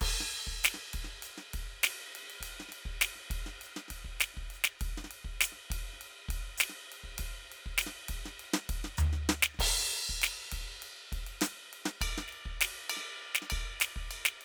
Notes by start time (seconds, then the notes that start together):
0.01 kick, hi-hat pedal, crash
0.10 kick
0.15 kick
0.21 snare
0.34 snare
0.48 kick
0.53 kick
0.64 snare, hi-hat pedal, ride
0.75 snare
0.94 kick, ride
1.01 kick
1.05 snare
1.23 hi-hat pedal, ride
1.39 snare
1.54 kick, ride
1.61 kick
1.84 snare, hi-hat pedal, ride
2.16 snare, ride
2.24 snare
2.28 snare, ride
2.42 kick, hi-hat pedal, ride
2.61 snare
2.70 snare, ride
2.86 kick
3.02 snare, hi-hat pedal, ride
3.16 snare
3.31 kick, ride
3.38 kick
3.47 snare
3.62 hi-hat pedal, ride
3.77 snare
3.89 kick, snare, ride
4.05 kick
4.21 snare, hi-hat pedal, ride
4.35 kick, snare
4.43 kick
4.51 hi-hat pedal, ride
4.65 snare
4.80 kick, hi-hat pedal, ride
4.89 kick
4.98 snare
5.05 snare
5.12 ride
5.25 kick
5.42 snare, hi-hat pedal, ride
5.53 snare
5.71 kick, ride
5.78 kick
5.94 snare
6.02 snare, ride
6.30 kick, ride
6.37 kick
6.59 snare, hi-hat pedal, ride
6.71 snare
6.93 ride
7.05 kick
7.13 snare
7.19 kick, hi-hat pedal, ride
7.26 kick
7.53 ride
7.67 kick
7.79 snare, hi-hat pedal, ride
7.87 snare
8.10 kick, ride
8.16 kick
8.27 snare
8.40 ride
8.54 snare
8.70 kick, ride
8.76 kick
8.85 snare
8.98 floor tom, hi-hat pedal
9.14 snare
9.30 snare
9.44 snare
9.55 snare
9.60 kick, hi-hat pedal, crash
9.71 kick
9.80 snare
10.10 kick
10.23 snare, hi-hat pedal, ride
10.53 kick, ride
10.59 kick, snare
10.83 ride
11.13 kick, snare, ride
11.20 kick
11.28 ride
11.42 snare, hi-hat pedal, ride
11.74 ride
11.87 snare
12.01 kick, hi-hat pedal, ride bell
12.08 kick
12.19 snare
12.29 snare
12.34 ride
12.46 kick
12.52 kick
12.62 snare, hi-hat pedal, ride
12.91 ride bell
12.98 snare
13.21 ride
13.36 snare
13.43 snare
13.51 kick, ride bell
13.59 kick
13.81 snare, hi-hat pedal, ride
13.96 kick, snare
14.03 kick
14.11 hi-hat pedal, ride bell
14.26 snare
14.41 hi-hat pedal, ride